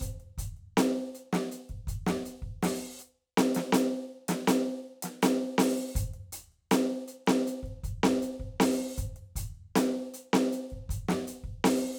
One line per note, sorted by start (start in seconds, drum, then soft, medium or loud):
0.01 closed hi-hat loud
0.01 kick medium
0.01 hi-hat pedal medium
0.20 closed hi-hat soft
0.38 closed hi-hat loud
0.38 kick medium
0.57 closed hi-hat soft
0.78 closed hi-hat loud
0.78 snare loud
1.15 closed hi-hat medium
1.33 snare loud
1.33 closed hi-hat soft
1.52 closed hi-hat medium
1.70 kick soft
1.70 closed hi-hat soft
1.88 closed hi-hat medium
1.88 kick medium
2.07 snare loud
2.26 closed hi-hat medium
2.42 kick soft
2.63 open hi-hat loud
2.63 snare loud
2.99 hi-hat pedal medium
3.38 snare loud
3.38 closed hi-hat loud
3.55 snare loud
3.55 closed hi-hat loud
3.73 closed hi-hat loud
3.73 snare loud
4.29 snare loud
4.29 closed hi-hat loud
4.48 closed hi-hat loud
4.48 snare loud
5.03 snare medium
5.03 closed hi-hat loud
5.23 closed hi-hat loud
5.23 snare loud
5.59 open hi-hat loud
5.59 snare loud
5.95 closed hi-hat loud
5.95 kick medium
5.95 hi-hat pedal medium
6.14 closed hi-hat soft
6.33 closed hi-hat loud
6.52 closed hi-hat soft
6.71 closed hi-hat loud
6.71 snare loud
6.90 closed hi-hat soft
7.08 closed hi-hat medium
7.27 snare loud
7.27 closed hi-hat soft
7.48 closed hi-hat medium
7.63 kick soft
7.63 closed hi-hat soft
7.84 closed hi-hat medium
7.84 kick medium
8.04 snare loud
8.04 closed hi-hat soft
8.21 closed hi-hat medium
8.21 snare soft
8.40 kick soft
8.40 closed hi-hat soft
8.60 open hi-hat loud
8.60 snare loud
8.97 closed hi-hat loud
8.97 kick medium
8.97 hi-hat pedal medium
9.16 closed hi-hat soft
9.36 closed hi-hat loud
9.36 kick medium
9.55 closed hi-hat soft
9.76 closed hi-hat loud
9.76 snare loud
10.14 closed hi-hat loud
10.34 snare loud
10.53 closed hi-hat medium
10.71 kick soft
10.71 closed hi-hat soft
10.90 closed hi-hat loud
10.90 kick medium
11.09 snare loud
11.28 closed hi-hat medium
11.44 kick soft
11.44 closed hi-hat soft
11.65 open hi-hat loud
11.65 snare loud